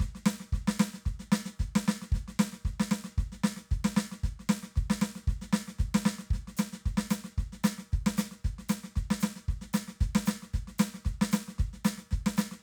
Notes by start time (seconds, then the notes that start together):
0.01 kick, snare
0.16 snare
0.27 snare
0.41 snare
0.53 kick, snare
0.69 snare
0.81 snare
0.95 snare
1.06 kick, snare
1.20 snare
1.33 snare
1.46 snare
1.60 kick, snare
1.76 snare
1.89 snare
2.03 snare
2.13 kick, snare
2.29 snare
2.40 snare
2.54 snare
2.66 kick, snare
2.81 snare
2.92 snare
3.05 snare
3.19 kick, snare
3.33 snare
3.45 snare
3.57 snare
3.72 kick, snare
3.85 snare
3.98 snare
4.13 snare
4.24 kick, snare
4.40 snare
4.50 snare
4.64 snare
4.77 kick, snare
4.91 snare
5.03 snare
5.16 snare
5.28 kick, snare
5.43 snare
5.54 snare
5.69 snare
5.80 kick, snare
5.95 snare
6.06 snare
6.20 snare
6.31 kick, snare
6.48 snare
6.58 snare, hi-hat pedal
6.74 snare
6.87 kick, snare
6.98 snare
7.11 snare, hi-hat pedal
7.25 snare
7.39 kick, snare
7.53 snare
7.65 snare, hi-hat pedal
7.79 snare
7.93 kick, snare
8.07 snare
8.18 snare, hi-hat pedal
8.32 snare
8.45 kick, snare
8.59 snare
8.70 snare, hi-hat pedal
8.85 snare
8.97 kick, snare
9.12 snare
9.21 snare, hi-hat pedal
9.37 snare
9.49 kick, snare
9.62 snare
9.74 snare, hi-hat pedal
9.89 snare
10.02 kick, snare
10.16 snare
10.27 snare, hi-hat pedal
10.43 snare
10.55 kick, snare
10.68 snare
10.79 snare, hi-hat pedal
10.95 snare
11.06 kick, snare
11.22 snare
11.33 snare, hi-hat pedal
11.49 snare
11.59 kick, snare
11.74 snare
11.86 snare, hi-hat pedal
11.99 snare
12.12 kick, snare
12.27 snare
12.38 snare, hi-hat pedal
12.52 snare